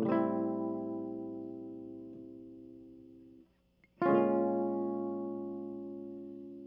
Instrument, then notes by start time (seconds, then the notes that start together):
electric guitar
0.00 A2 C#3
0.06 G3 C4
0.12 E4
4.02 F4
4.06 G#3 C#4
4.12 A#2 D3